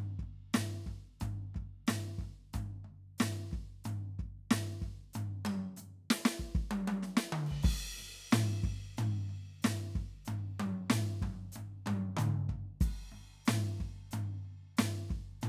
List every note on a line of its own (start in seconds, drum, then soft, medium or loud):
0.19 kick soft
0.19 floor tom soft
0.54 snare loud
0.54 floor tom loud
0.54 hi-hat pedal medium
0.87 kick soft
0.87 floor tom soft
1.20 kick soft
1.20 floor tom loud
1.20 hi-hat pedal medium
1.55 kick soft
1.55 floor tom soft
1.87 snare loud
1.87 floor tom loud
1.87 hi-hat pedal medium
2.19 kick soft
2.19 floor tom soft
2.53 kick soft
2.53 floor tom medium
2.53 hi-hat pedal medium
2.60 floor tom soft
2.85 floor tom soft
3.18 snare loud
3.18 floor tom loud
3.18 hi-hat pedal medium
3.51 kick soft
3.51 floor tom soft
3.84 floor tom loud
3.84 hi-hat pedal medium
4.19 kick soft
4.19 floor tom soft
4.51 snare loud
4.51 floor tom loud
4.51 hi-hat pedal medium
4.82 kick soft
4.82 floor tom soft
5.14 floor tom loud
5.14 hi-hat pedal medium
5.45 high tom loud
5.45 floor tom medium
5.77 floor tom soft
5.77 hi-hat pedal medium
6.10 snare loud
6.25 snare loud
6.40 kick soft
6.55 kick medium
6.71 high tom loud
6.88 high tom loud
7.03 snare soft
7.17 snare loud
7.33 mid tom loud
7.47 crash medium
7.51 kick soft
7.63 kick medium
7.63 crash medium
7.98 floor tom soft
8.31 snare loud
8.31 floor tom loud
8.31 hi-hat pedal medium
8.64 kick medium
8.64 floor tom soft
8.98 floor tom loud
8.98 hi-hat pedal medium
9.29 floor tom soft
9.62 snare loud
9.62 floor tom loud
9.62 hi-hat pedal medium
9.96 kick medium
9.96 floor tom soft
10.25 floor tom loud
10.25 hi-hat pedal medium
10.60 floor tom medium
10.60 high tom loud
10.90 snare loud
10.90 floor tom loud
10.90 hi-hat pedal medium
11.22 kick medium
11.22 floor tom medium
11.22 high tom medium
11.52 floor tom medium
11.52 hi-hat pedal medium
11.86 floor tom loud
11.86 high tom loud
12.17 floor tom loud
12.17 hi-hat pedal medium
12.17 mid tom loud
12.49 kick soft
12.49 floor tom medium
12.81 kick medium
12.81 hi-hat pedal medium
12.81 crash soft
13.12 floor tom soft
13.45 snare loud
13.45 floor tom loud
13.45 hi-hat pedal medium
13.56 floor tom soft
13.80 kick soft
13.80 floor tom soft
14.11 floor tom loud
14.11 hi-hat pedal medium
14.45 floor tom soft
14.77 snare loud
14.77 floor tom loud
14.77 hi-hat pedal medium
15.10 kick medium
15.10 floor tom soft
15.42 floor tom loud
15.42 hi-hat pedal medium